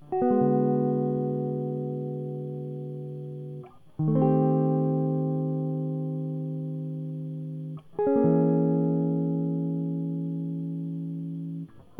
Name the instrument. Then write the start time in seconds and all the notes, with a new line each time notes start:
electric guitar
0.12 F#4
0.22 B3
0.31 G#3
0.36 D3
4.00 D#3
4.08 A3
4.16 C4
4.22 G4
7.98 G#4
8.07 C#4
8.16 A#3
8.25 E3